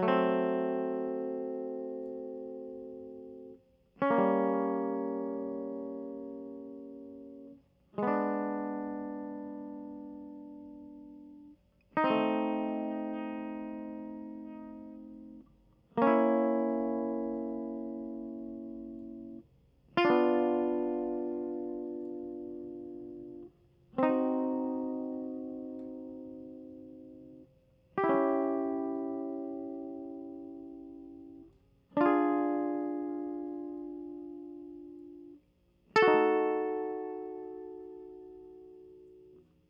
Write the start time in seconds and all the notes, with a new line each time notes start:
0.00 F#3 A3
0.09 C4
4.03 C#4
4.12 A#3
4.19 G3
7.99 G#3
8.04 B3
8.08 D4
11.98 D#4
12.05 C4
12.11 A3
15.99 A#3
16.03 C#4
16.08 E4
19.98 F4
20.06 D4
20.11 B3
23.99 C4
24.04 D#4
27.99 G4
28.04 E4
28.10 C#4
31.98 D4 F4
32.06 G#4
35.97 A4
36.03 F#4
36.08 D#4